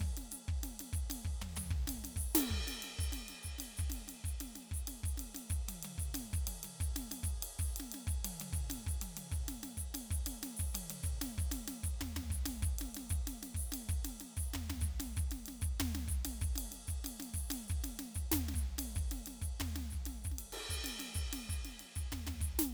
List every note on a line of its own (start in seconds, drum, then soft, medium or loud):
0.01 kick soft
0.17 snare soft
0.17 ride medium
0.32 snare soft
0.32 hi-hat pedal medium
0.32 ride medium
0.48 kick soft
0.64 snare soft
0.64 ride medium
0.80 snare soft
0.80 ride medium
0.93 kick soft
0.93 hi-hat pedal medium
1.10 snare soft
1.10 ride loud
1.25 kick soft
1.42 floor tom medium
1.42 high tom soft
1.56 floor tom medium
1.56 hi-hat pedal medium
1.56 high tom medium
1.71 kick soft
1.88 snare soft
1.88 ride loud
2.04 snare soft
2.04 ride medium
2.16 kick soft
2.16 hi-hat pedal medium
2.35 snare medium
2.35 ride medium
2.51 kick soft
2.68 snare soft
2.68 ride medium
2.83 snare soft
2.83 ride medium
2.99 kick soft
2.99 hi-hat pedal medium
3.13 snare soft
3.13 ride medium
3.29 snare soft
3.29 ride medium
3.43 kick soft
3.43 hi-hat pedal medium
3.59 snare soft
3.59 ride medium
3.77 kick soft
3.77 hi-hat pedal medium
3.90 snare soft
3.90 ride medium
4.08 snare soft
4.08 ride medium
4.24 kick soft
4.24 hi-hat pedal medium
4.41 snare soft
4.41 ride medium
4.56 snare soft
4.56 ride medium
4.72 kick soft
4.72 hi-hat pedal medium
4.88 snare soft
4.88 ride medium
5.04 kick soft
5.04 hi-hat pedal medium
5.18 snare soft
5.18 ride medium
5.35 snare soft
5.35 ride medium
5.50 kick soft
5.50 hi-hat pedal medium
5.69 high tom soft
5.69 ride medium
5.83 high tom soft
5.83 ride medium
5.98 kick soft
5.98 hi-hat pedal medium
6.15 snare soft
6.15 ride loud
6.33 kick soft
6.33 hi-hat pedal medium
6.47 high tom soft
6.47 ride loud
6.63 high tom soft
6.63 ride medium
6.81 kick soft
6.81 hi-hat pedal medium
6.96 snare soft
6.96 ride medium
7.12 snare soft
7.12 ride medium
7.24 kick soft
7.24 hi-hat pedal loud
7.43 ride loud
7.59 kick soft
7.59 hi-hat pedal medium
7.76 snare soft
7.76 ride medium
7.92 snare soft
7.92 ride medium
8.07 kick soft
8.07 hi-hat pedal medium
8.25 high tom medium
8.25 ride loud
8.40 high tom soft
8.40 ride medium
8.53 kick soft
8.53 hi-hat pedal medium
8.70 snare soft
8.70 ride medium
8.87 kick soft
8.87 hi-hat pedal medium
9.02 high tom soft
9.02 ride medium
9.17 high tom soft
9.17 ride medium
9.32 kick soft
9.32 hi-hat pedal medium
9.49 snare soft
9.49 ride medium
9.63 snare soft
9.63 ride medium
9.77 kick soft
9.77 hi-hat pedal medium
9.95 snare soft
9.95 ride loud
10.11 kick soft
10.11 hi-hat pedal medium
10.27 snare soft
10.27 ride loud
10.43 snare soft
10.43 ride medium
10.57 kick soft
10.57 hi-hat pedal medium
10.75 high tom soft
10.75 ride loud
10.90 high tom soft
10.90 ride medium
11.04 kick soft
11.04 hi-hat pedal medium
11.22 snare medium
11.22 ride medium
11.38 kick soft
11.38 hi-hat pedal medium
11.52 snare soft
11.52 ride medium
11.68 snare soft
11.68 ride medium
11.84 kick soft
11.84 hi-hat pedal medium
12.01 snare soft
12.01 floor tom medium
12.17 snare soft
12.17 floor tom medium
12.31 kick soft
12.31 hi-hat pedal medium
12.46 snare medium
12.46 ride medium
12.63 kick soft
12.63 hi-hat pedal medium
12.79 snare soft
12.79 ride medium
12.95 snare soft
12.95 ride medium
13.10 kick soft
13.10 hi-hat pedal loud
13.27 snare soft
13.27 ride medium
13.43 snare soft
13.43 ride medium
13.55 kick soft
13.55 hi-hat pedal medium
13.72 snare soft
13.72 ride loud
13.89 kick soft
13.89 hi-hat pedal medium
14.05 snare soft
14.05 ride medium
14.20 snare soft
14.20 ride medium
14.37 kick soft
14.37 hi-hat pedal medium
14.54 snare soft
14.54 floor tom medium
14.70 snare soft
14.70 floor tom medium
14.81 kick soft
14.81 hi-hat pedal medium
15.00 snare soft
15.00 ride medium
15.17 kick soft
15.17 hi-hat pedal medium
15.31 snare soft
15.31 ride medium
15.46 snare soft
15.46 ride medium
15.62 kick soft
15.62 hi-hat pedal medium
15.80 snare medium
15.80 floor tom medium
15.95 snare soft
16.08 kick soft
16.08 hi-hat pedal medium
16.25 snare soft
16.25 ride loud
16.42 kick soft
16.42 hi-hat pedal medium
16.56 snare soft
16.56 ride loud
16.72 snare soft
16.72 ride medium
16.88 kick soft
16.88 hi-hat pedal medium
17.05 snare soft
17.05 ride medium
17.20 snare soft
17.20 ride medium
17.34 kick soft
17.34 hi-hat pedal medium
17.51 snare medium
17.51 ride loud
17.69 kick soft
17.69 hi-hat pedal medium
17.84 snare soft
17.84 ride medium
17.99 snare soft
17.99 ride medium
18.15 kick soft
18.15 hi-hat pedal medium
18.32 snare medium
18.32 floor tom medium
18.49 snare soft
18.54 kick soft
18.54 hi-hat pedal medium
18.79 snare soft
18.79 ride loud
18.96 kick soft
18.96 hi-hat pedal medium
19.12 snare soft
19.12 ride medium
19.26 snare soft
19.26 ride medium
19.42 kick soft
19.42 hi-hat pedal medium
19.60 snare soft
19.60 floor tom medium
19.76 snare soft
19.91 kick soft
19.91 hi-hat pedal medium
20.06 snare soft
20.06 ride medium
20.24 kick soft
20.24 hi-hat pedal medium
20.32 snare soft
20.39 ride medium
20.53 ride medium
20.70 kick soft
20.70 hi-hat pedal medium
20.84 snare soft
20.84 ride medium
21.00 snare soft
21.00 ride medium
21.15 kick soft
21.15 hi-hat pedal medium
21.33 snare soft
21.33 ride medium
21.50 kick soft
21.50 hi-hat pedal medium
21.65 snare soft
21.65 ride medium
21.80 snare soft
21.80 ride medium
21.96 kick soft
21.96 hi-hat pedal medium
22.12 snare soft
22.12 floor tom medium
22.27 snare soft
22.27 floor tom medium
22.41 kick soft
22.41 hi-hat pedal medium
22.59 snare medium